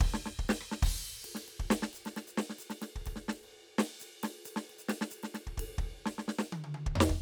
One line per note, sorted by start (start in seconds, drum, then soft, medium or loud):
0.01 kick loud
0.01 crash medium
0.14 snare medium
0.26 snare medium
0.39 kick medium
0.49 snare loud
0.49 crash medium
0.61 cross-stick medium
0.72 snare medium
0.83 kick loud
0.83 crash loud
1.23 hi-hat pedal soft
1.23 ride medium
1.35 snare medium
1.35 ride medium
1.49 ride soft
1.60 kick medium
1.67 hi-hat pedal soft
1.71 snare loud
1.71 ride soft
1.83 snare medium
1.94 hi-hat pedal medium
1.94 ride soft
2.06 snare medium
2.06 ride medium
2.17 snare medium
2.17 ride medium
2.28 hi-hat pedal medium
2.38 snare medium
2.38 ride medium
2.50 snare soft
2.59 hi-hat pedal medium
2.59 ride medium
2.70 snare medium
2.70 ride medium
2.82 snare medium
2.82 ride medium
2.96 kick soft
3.06 kick medium
3.06 ride medium
3.16 snare soft
3.29 snare medium
3.33 ride soft
3.44 ride soft
3.79 snare loud
3.79 ride medium
4.00 hi-hat pedal medium
4.00 ride medium
4.24 snare medium
4.24 ride medium
4.45 hi-hat pedal medium
4.45 ride medium
4.57 snare medium
4.57 ride soft
4.70 ride soft
4.79 hi-hat pedal medium
4.89 snare medium
4.89 ride medium
5.02 snare medium
5.11 hi-hat pedal medium
5.11 ride medium
5.24 snare medium
5.24 ride medium
5.35 snare medium
5.35 ride medium
5.47 kick soft
5.58 kick medium
5.58 ride loud
5.79 kick medium
5.79 ride soft
6.06 snare medium
6.19 snare medium
6.29 snare medium
6.39 snare medium
6.53 high tom loud
6.65 high tom medium
6.75 high tom medium
6.87 kick medium
6.96 floor tom loud
7.01 snare loud
7.10 kick medium